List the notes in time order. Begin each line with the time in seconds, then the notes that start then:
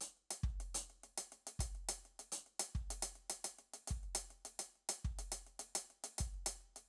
0.01 closed hi-hat
0.17 closed hi-hat
0.31 closed hi-hat
0.44 kick
0.50 closed hi-hat
0.60 closed hi-hat
0.75 closed hi-hat
0.90 closed hi-hat
1.04 closed hi-hat
1.18 closed hi-hat
1.32 closed hi-hat
1.47 closed hi-hat
1.59 kick, closed hi-hat
1.75 closed hi-hat
1.89 closed hi-hat
2.05 closed hi-hat
2.19 closed hi-hat
2.32 closed hi-hat
2.46 closed hi-hat
2.60 closed hi-hat
2.75 kick, closed hi-hat
2.91 closed hi-hat
3.03 closed hi-hat
3.16 closed hi-hat
3.30 closed hi-hat
3.45 closed hi-hat
3.59 closed hi-hat
3.74 closed hi-hat
3.88 kick, closed hi-hat
4.03 closed hi-hat
4.15 closed hi-hat
4.31 closed hi-hat
4.45 closed hi-hat
4.59 closed hi-hat
4.76 closed hi-hat
4.89 closed hi-hat
5.05 kick, closed hi-hat
5.19 closed hi-hat
5.32 closed hi-hat
5.47 closed hi-hat
5.60 closed hi-hat
5.75 closed hi-hat
5.90 closed hi-hat
6.04 closed hi-hat
6.18 kick, closed hi-hat
6.34 closed hi-hat
6.46 closed hi-hat
6.61 closed hi-hat
6.76 closed hi-hat